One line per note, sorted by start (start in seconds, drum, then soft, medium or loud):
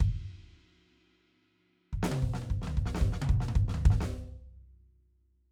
0.01 kick loud
1.93 kick medium
2.04 snare loud
2.12 high tom loud
2.23 kick medium
2.34 snare medium
2.42 mid tom medium
2.51 kick medium
2.62 snare medium
2.68 floor tom medium
2.78 kick medium
2.86 snare medium
2.95 snare medium
3.02 kick loud
3.13 snare medium
3.22 high tom loud
3.30 kick loud
3.41 snare medium
3.49 mid tom medium
3.56 kick loud
3.69 snare medium
3.75 floor tom loud
3.86 kick loud
3.91 snare medium
4.01 snare medium